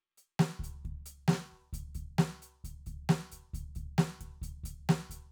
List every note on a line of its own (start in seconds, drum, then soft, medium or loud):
0.18 closed hi-hat soft
0.40 snare loud
0.60 kick medium
0.64 closed hi-hat medium
0.85 kick medium
0.85 closed hi-hat soft
1.06 closed hi-hat medium
1.29 snare loud
1.32 snare medium
1.53 kick soft
1.73 closed hi-hat medium
1.73 kick medium
1.95 closed hi-hat soft
1.95 kick soft
2.19 snare loud
2.43 closed hi-hat soft
2.65 closed hi-hat soft
2.65 kick soft
2.87 closed hi-hat soft
2.87 kick soft
3.10 snare loud
3.32 closed hi-hat medium
3.32 kick soft
3.54 closed hi-hat soft
3.54 kick medium
3.76 closed hi-hat soft
3.76 kick soft
3.99 snare loud
4.21 kick soft
4.21 closed hi-hat soft
4.42 closed hi-hat soft
4.42 kick soft
4.64 closed hi-hat medium
4.64 kick soft
4.90 snare loud
5.10 closed hi-hat medium
5.10 kick soft